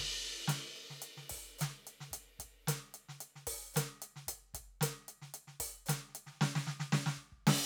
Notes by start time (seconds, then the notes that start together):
0.48 snare, closed hi-hat
0.76 closed hi-hat
0.91 snare
1.02 closed hi-hat
1.18 snare
1.30 kick, open hi-hat
1.59 snare, closed hi-hat, hi-hat pedal
1.87 closed hi-hat
2.01 snare
2.11 kick, closed hi-hat
2.40 kick, closed hi-hat
2.68 snare, closed hi-hat
2.94 closed hi-hat
3.09 snare
3.21 closed hi-hat
3.36 snare
3.47 kick, open hi-hat
3.74 snare, closed hi-hat, hi-hat pedal
4.02 closed hi-hat
4.16 snare
4.28 kick, closed hi-hat
4.54 kick, closed hi-hat
4.81 snare, closed hi-hat
5.09 closed hi-hat
5.22 snare
5.34 closed hi-hat
5.48 snare
5.60 kick, open hi-hat
5.86 snare, closed hi-hat, hi-hat pedal
6.09 snare
6.15 closed hi-hat
6.27 snare
6.32 snare
6.35 snare
6.41 snare
6.56 snare
6.67 snare
6.80 snare
6.93 snare
7.06 snare
7.17 kick
7.32 kick
7.47 snare, crash